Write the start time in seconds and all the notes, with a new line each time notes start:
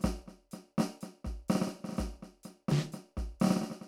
0.01 kick, snare, hi-hat pedal
0.04 snare
0.17 snare
0.22 snare
0.26 snare
0.28 snare
0.51 snare, hi-hat pedal
0.78 snare
0.80 snare
1.01 snare, hi-hat pedal
1.25 kick, snare
1.48 snare, hi-hat pedal
1.55 snare
1.62 snare
1.67 snare
1.75 snare
1.80 snare
1.84 snare
1.89 snare
1.93 snare
1.96 snare, hi-hat pedal
1.98 kick, snare
2.06 snare
2.11 snare
2.14 snare
2.19 snare
2.23 snare
2.43 snare, hi-hat pedal
2.69 snare
2.72 snare
2.78 snare
2.92 snare, hi-hat pedal
3.17 kick, snare
3.40 snare, hi-hat pedal
3.44 snare
3.47 snare
3.51 snare
3.57 snare
3.62 snare
3.63 snare
3.70 snare
3.81 snare